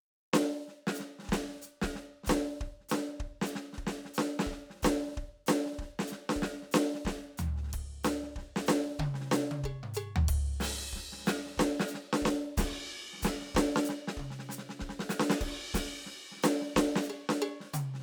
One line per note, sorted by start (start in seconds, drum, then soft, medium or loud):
0.33 snare medium
0.33 snare loud
0.33 hi-hat pedal medium
0.42 snare soft
0.53 snare soft
0.58 snare soft
0.65 snare soft
0.68 snare soft
0.87 snare loud
0.94 hi-hat pedal medium
1.00 snare soft
1.19 snare soft
1.22 snare soft
1.26 snare soft
1.28 kick medium
1.28 snare soft
1.32 snare loud
1.48 snare soft
1.52 snare soft
1.56 snare soft
1.62 snare soft
1.62 hi-hat pedal medium
1.81 kick soft
1.81 snare loud
1.95 snare soft
2.23 kick medium
2.23 snare soft
2.23 hi-hat pedal loud
2.28 snare soft
2.28 snare loud
2.36 snare soft
2.48 snare soft
2.50 snare soft
2.54 snare soft
2.61 kick medium
2.61 snare soft
2.80 snare soft
2.89 snare medium
2.89 hi-hat pedal loud
2.97 snare soft
3.08 snare soft
3.13 snare soft
3.16 snare soft
3.19 kick medium
3.19 snare soft
3.21 snare soft
3.41 snare loud
3.46 hi-hat pedal medium
3.55 snare medium
3.73 snare soft
3.78 kick soft
3.87 snare medium
4.05 snare soft
4.14 hi-hat pedal loud
4.18 snare loud
4.27 snare soft
4.39 snare loud
4.46 kick soft
4.51 snare soft
4.70 snare soft
4.75 snare soft
4.79 snare soft
4.82 kick medium
4.82 snare soft
4.82 hi-hat pedal loud
4.84 snare loud
5.02 snare soft
5.07 snare soft
5.12 snare soft
5.17 kick medium
5.17 snare soft
5.46 snare loud
5.46 hi-hat pedal loud
5.66 snare soft
5.72 snare soft
5.77 kick soft
5.77 snare soft
5.81 snare soft
5.99 snare loud
6.07 hi-hat pedal medium
6.12 snare medium
6.29 snare medium
6.36 kick soft
6.42 snare medium
6.62 snare soft
6.71 snare loud
6.71 hi-hat pedal medium
6.94 snare soft
7.05 kick medium
7.05 snare medium
7.37 floor tom loud
7.37 hi-hat pedal loud
7.56 snare soft
7.63 snare soft
7.67 snare soft
7.72 kick medium
7.72 snare soft
7.72 ride medium
8.04 snare loud
8.04 hi-hat pedal loud
8.22 snare soft
8.27 snare soft
8.32 snare soft
8.36 kick soft
8.56 snare loud
8.66 snare loud
8.66 hi-hat pedal medium
8.90 snare soft
8.99 kick medium
8.99 high tom loud
9.14 snare soft
9.20 snare soft
9.26 snare soft
9.31 snare loud
9.31 hi-hat pedal medium
9.51 high tom loud
9.63 kick medium
9.63 percussion medium
9.83 mid tom loud
9.94 hi-hat pedal loud
9.94 percussion loud
10.16 floor tom loud
10.28 kick medium
10.28 ride loud
10.60 snare medium
10.60 hi-hat pedal loud
10.60 crash loud
10.63 snare medium
10.67 snare soft
10.74 snare soft
10.77 snare soft
10.81 snare soft
10.84 snare soft
10.93 kick soft
10.93 snare soft
11.12 snare soft
11.17 snare soft
11.20 snare soft
11.24 snare soft
11.24 hi-hat pedal medium
11.46 snare soft
11.50 snare soft
11.53 snare soft
11.56 kick soft
11.56 snare soft
11.59 snare loud
11.80 snare loud
11.87 hi-hat pedal medium
11.94 snare medium
12.13 snare loud
12.22 kick soft
12.22 snare loud
12.57 kick medium
12.57 snare loud
12.57 hi-hat pedal loud
12.57 ride loud
13.13 snare soft
13.17 snare soft
13.21 kick medium
13.21 snare soft
13.21 hi-hat pedal loud
13.24 snare soft
13.24 snare loud
13.41 snare soft
13.46 snare soft
13.49 snare soft
13.54 kick medium
13.54 snare loud
13.76 snare loud
13.84 hi-hat pedal loud
13.89 snare medium
14.07 snare medium
14.17 kick soft
14.17 high tom medium
14.30 snare soft
14.39 snare soft
14.49 snare medium
14.49 hi-hat pedal loud
14.58 snare medium
14.69 snare medium
14.79 kick soft
14.79 snare medium
14.89 snare medium
15.09 snare medium
15.09 hi-hat pedal loud
15.19 snare loud
15.30 snare loud
15.41 kick medium
15.41 ride loud
15.74 kick medium
15.74 snare loud
15.74 hi-hat pedal loud
15.74 crash medium
16.06 snare soft
16.31 snare soft
16.36 snare soft
16.40 snare soft
16.40 hi-hat pedal loud
16.44 snare loud
16.61 snare soft
16.66 snare soft
16.69 snare soft
16.73 kick soft
16.73 snare soft
16.76 snare loud
16.95 snare loud
17.03 hi-hat pedal medium
17.10 percussion medium
17.29 snare loud
17.42 percussion loud
17.60 snare soft
17.63 snare soft
17.73 hi-hat pedal loud
17.73 high tom loud
17.94 snare soft
17.99 snare soft